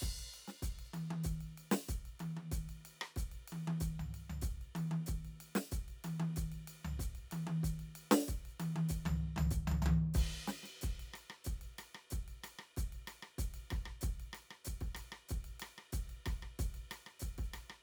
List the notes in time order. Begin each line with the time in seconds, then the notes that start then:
0.01 kick, hi-hat pedal, ride
0.19 ride
0.34 ride
0.48 snare
0.63 kick, hi-hat pedal, ride
0.79 ride
0.85 hi-hat pedal
0.94 high tom, ride
1.11 high tom
1.24 kick, hi-hat pedal, ride
1.41 ride
1.58 ride
1.72 snare
1.89 kick, hi-hat pedal, ride
2.06 ride
2.20 high tom, ride
2.37 high tom
2.52 kick, hi-hat pedal, ride
2.69 ride
2.85 ride
3.01 cross-stick
3.16 kick, hi-hat pedal, ride
3.32 ride
3.48 ride
3.52 high tom
3.68 high tom
3.80 kick, hi-hat pedal
3.85 ride
4.00 floor tom, ride
4.14 ride
4.30 floor tom
4.42 kick, hi-hat pedal, ride
4.61 ride
4.75 high tom, ride
4.91 high tom
5.07 kick, hi-hat pedal, ride
5.25 ride
5.41 ride
5.55 snare
5.72 kick, hi-hat pedal, ride
5.88 ride
6.04 high tom, ride
6.20 high tom
6.36 kick, hi-hat pedal, ride
6.52 ride
6.68 ride
6.85 floor tom
7.00 kick, hi-hat pedal, ride
7.15 ride
7.32 high tom, ride
7.47 high tom
7.64 kick, hi-hat pedal, ride
7.80 ride
7.96 ride
8.11 snare
8.28 kick, hi-hat pedal, ride
8.45 hi-hat pedal, ride
8.60 high tom, ride
8.76 high tom
8.89 kick, hi-hat pedal, ride
9.06 floor tom, high tom
9.36 floor tom, high tom
9.51 kick, hi-hat pedal
9.68 floor tom
9.72 high tom
9.82 floor tom, high tom
10.14 kick, hi-hat pedal, crash, ride
10.48 snare, ride
10.63 snare, ride
10.82 kick, hi-hat pedal, ride
11.00 ride
11.14 cross-stick, ride
11.30 cross-stick
11.45 kick, hi-hat pedal, ride
11.61 ride
11.79 cross-stick, ride
11.95 cross-stick
12.11 kick, hi-hat pedal, ride
12.28 ride
12.44 cross-stick, ride
12.59 cross-stick
12.77 kick, hi-hat pedal, ride
12.93 ride
13.08 cross-stick, ride
13.23 cross-stick
13.39 kick, hi-hat pedal, ride
13.54 ride
13.71 kick, cross-stick, ride
13.86 cross-stick
14.01 kick, hi-hat pedal, ride
14.20 ride
14.33 cross-stick, ride
14.51 cross-stick
14.65 kick, hi-hat pedal, ride
14.81 kick, ride
14.95 cross-stick, ride
15.12 cross-stick
15.29 kick, hi-hat pedal, ride
15.45 ride
15.60 cross-stick, ride
15.78 cross-stick
15.93 kick, hi-hat pedal, ride
16.10 ride
16.26 kick, cross-stick, ride
16.43 cross-stick
16.59 kick, hi-hat pedal, ride
16.74 ride
16.91 cross-stick, ride
17.07 cross-stick
17.20 kick, hi-hat pedal, ride
17.38 kick, ride
17.44 hi-hat pedal
17.54 cross-stick, ride
17.70 cross-stick